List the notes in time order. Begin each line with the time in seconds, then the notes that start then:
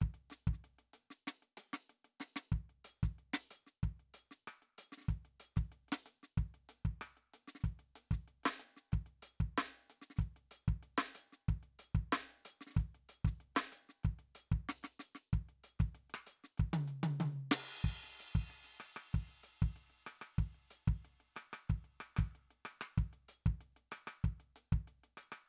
0.01 kick, closed hi-hat
0.14 closed hi-hat
0.30 snare, closed hi-hat
0.47 kick
0.53 snare
0.64 closed hi-hat
0.79 closed hi-hat
0.94 closed hi-hat
1.11 snare
1.27 snare, closed hi-hat
1.43 closed hi-hat
1.57 closed hi-hat
1.73 snare
1.90 closed hi-hat
2.05 closed hi-hat
2.20 snare, closed hi-hat
2.36 snare
2.52 kick, closed hi-hat
2.70 closed hi-hat
2.85 closed hi-hat
3.03 kick, snare
3.19 closed hi-hat
3.34 snare, closed hi-hat
3.51 closed hi-hat
3.67 snare
3.83 kick, closed hi-hat
4.00 closed hi-hat
4.14 closed hi-hat
4.31 snare
4.48 cross-stick, closed hi-hat
4.62 closed hi-hat
4.78 closed hi-hat
4.92 snare
4.98 snare
5.01 snare
5.04 snare
5.09 kick, snare, closed hi-hat
5.25 closed hi-hat
5.40 closed hi-hat
5.56 kick, snare
5.72 closed hi-hat
5.89 snare, closed hi-hat
6.06 closed hi-hat
6.23 snare
6.38 kick, closed hi-hat
6.54 closed hi-hat
6.69 closed hi-hat
6.85 kick
7.01 cross-stick, closed hi-hat
7.17 closed hi-hat
7.34 closed hi-hat
7.48 snare
7.55 snare
7.60 kick, snare
7.66 closed hi-hat
7.79 closed hi-hat
7.96 closed hi-hat
8.11 kick, snare
8.28 closed hi-hat
8.44 snare, closed hi-hat
8.60 closed hi-hat
8.77 snare
8.92 kick, closed hi-hat
9.06 closed hi-hat
9.23 closed hi-hat
9.40 kick
9.58 snare, closed hi-hat
9.74 closed hi-hat
9.90 closed hi-hat
10.02 snare
10.10 snare
10.16 kick, snare
10.21 closed hi-hat
10.36 closed hi-hat
10.51 closed hi-hat
10.68 kick
10.83 closed hi-hat
10.98 snare, closed hi-hat
11.15 closed hi-hat
11.33 snare
11.49 kick, closed hi-hat
11.63 closed hi-hat
11.79 closed hi-hat
11.95 kick
12.13 snare, closed hi-hat
12.30 closed hi-hat
12.45 open hi-hat
12.61 snare
12.67 snare
12.70 snare
12.74 kick, snare, hi-hat pedal
12.80 closed hi-hat
12.95 closed hi-hat
13.09 closed hi-hat
13.25 kick, snare
13.40 closed hi-hat
13.56 snare, closed hi-hat
13.72 closed hi-hat
13.89 snare
14.04 kick, closed hi-hat
14.19 closed hi-hat
14.35 closed hi-hat
14.52 kick
14.69 snare, closed hi-hat
14.83 snare, closed hi-hat
15.00 closed hi-hat, snare
15.15 snare
15.33 kick, closed hi-hat
15.49 closed hi-hat
15.64 closed hi-hat
15.80 kick, snare
15.95 closed hi-hat
16.10 closed hi-hat
16.14 cross-stick
16.27 closed hi-hat
16.44 snare
16.58 kick, closed hi-hat
16.73 high tom
16.88 closed hi-hat
17.03 high tom
17.20 closed hi-hat, high tom
17.51 snare, crash
17.84 kick
17.90 closed hi-hat
18.04 closed hi-hat
18.20 closed hi-hat
18.35 kick
18.50 closed hi-hat
18.65 closed hi-hat
18.80 closed hi-hat, cross-stick
18.96 cross-stick
19.13 kick, closed hi-hat
19.29 closed hi-hat
19.43 closed hi-hat
19.62 kick
19.76 closed hi-hat
19.90 closed hi-hat
20.07 cross-stick, closed hi-hat
20.22 cross-stick
20.38 kick, closed hi-hat
20.55 closed hi-hat
20.71 closed hi-hat
20.88 kick
21.05 closed hi-hat
21.20 closed hi-hat
21.36 cross-stick, closed hi-hat
21.53 cross-stick
21.70 kick, closed hi-hat
21.84 closed hi-hat
22.00 cross-stick, closed hi-hat
22.17 kick, cross-stick
22.35 closed hi-hat
22.51 closed hi-hat
22.65 cross-stick, closed hi-hat
22.81 cross-stick
22.98 kick, closed hi-hat
23.13 closed hi-hat
23.29 closed hi-hat
23.46 kick
23.61 closed hi-hat
23.77 closed hi-hat
23.92 closed hi-hat, cross-stick
24.07 cross-stick
24.24 kick, closed hi-hat
24.40 closed hi-hat
24.56 closed hi-hat
24.72 kick
24.88 closed hi-hat
25.04 closed hi-hat
25.17 closed hi-hat, cross-stick
25.32 cross-stick